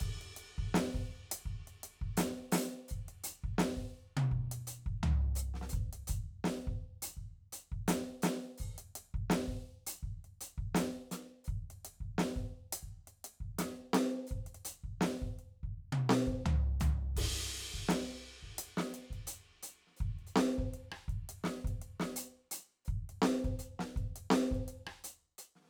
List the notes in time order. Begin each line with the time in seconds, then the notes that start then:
0.01 kick, closed hi-hat
0.22 closed hi-hat
0.37 closed hi-hat
0.59 kick
0.75 snare
0.95 kick
1.32 closed hi-hat
1.46 kick
1.68 closed hi-hat
1.84 closed hi-hat
2.02 kick
2.18 open hi-hat, snare
2.52 open hi-hat, snare
2.89 kick, hi-hat pedal
3.09 closed hi-hat
3.24 closed hi-hat
3.44 kick
3.59 snare
3.77 kick
4.17 high tom
4.32 kick
4.52 closed hi-hat
4.68 closed hi-hat
4.87 kick
5.04 floor tom
5.23 kick
5.36 hi-hat pedal
5.55 snare
5.62 snare
5.70 closed hi-hat, kick
5.93 closed hi-hat
6.08 closed hi-hat, kick
6.45 snare
6.68 kick
7.03 closed hi-hat
7.17 kick
7.53 closed hi-hat
7.72 kick
7.89 open hi-hat, snare
8.23 open hi-hat, snare
8.58 kick, hi-hat pedal
8.79 closed hi-hat
8.96 closed hi-hat
9.15 kick
9.31 snare
9.48 kick
9.87 closed hi-hat
10.03 kick
10.25 closed hi-hat
10.41 closed hi-hat
10.58 kick
10.75 open hi-hat, snare
10.80 snare
11.12 open hi-hat, snare
11.45 kick, hi-hat pedal
11.71 closed hi-hat
11.85 closed hi-hat
12.01 kick
12.19 snare
12.37 kick
12.73 closed hi-hat
12.83 kick
13.08 closed hi-hat
13.25 closed hi-hat
13.41 kick
13.59 snare, open hi-hat
13.94 snare, open hi-hat
14.27 hi-hat pedal
14.32 kick
14.47 closed hi-hat
14.55 closed hi-hat
14.65 closed hi-hat
14.84 kick
15.01 snare
15.22 kick
15.39 closed hi-hat
15.64 kick
15.93 high tom
16.10 snare
16.27 kick
16.46 floor tom
16.81 floor tom, hi-hat pedal
17.17 kick, crash, ride
17.74 kick
17.89 snare
18.43 kick
18.59 closed hi-hat
18.78 snare
18.95 closed hi-hat
19.11 kick, closed hi-hat
19.28 open hi-hat
19.63 open hi-hat
19.87 snare
19.91 snare
19.97 kick, hi-hat pedal
20.19 closed hi-hat
20.27 closed hi-hat
20.36 snare
20.59 kick
20.74 closed hi-hat
20.92 cross-stick
21.09 kick, closed hi-hat
21.30 closed hi-hat
21.44 snare
21.65 kick, closed hi-hat
21.82 closed hi-hat
22.00 snare
22.17 open hi-hat
22.52 open hi-hat
22.86 kick, hi-hat pedal
22.93 closed hi-hat
23.10 closed hi-hat
23.22 snare
23.45 kick, closed hi-hat
23.60 closed hi-hat
23.80 snare
23.97 kick, closed hi-hat
24.16 closed hi-hat
24.31 snare
24.52 kick, closed hi-hat
24.69 closed hi-hat
24.87 cross-stick
25.05 open hi-hat
25.39 open hi-hat
25.56 snare
25.60 snare
25.63 snare
25.66 snare